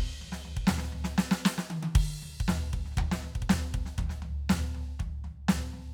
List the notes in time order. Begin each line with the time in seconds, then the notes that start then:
0.22 floor tom
0.33 snare
0.45 floor tom
0.57 kick
0.67 snare, floor tom
0.79 snare
0.84 snare
0.93 floor tom
0.98 hi-hat pedal
1.05 snare
1.18 snare
1.32 snare
1.46 snare
1.59 snare
1.71 high tom
1.83 high tom
1.96 kick, crash
2.23 floor tom
2.41 kick
2.49 snare, floor tom
2.74 kick, floor tom
2.86 snare
2.92 snare
2.97 kick, snare, floor tom
3.12 snare
3.24 floor tom
3.36 kick
3.42 kick
3.50 snare, floor tom
3.74 kick, floor tom
3.86 snare
3.99 kick, floor tom
4.10 snare
4.23 floor tom
4.50 snare, floor tom
4.75 floor tom
5.00 kick, floor tom
5.25 floor tom
5.49 snare, floor tom
5.74 floor tom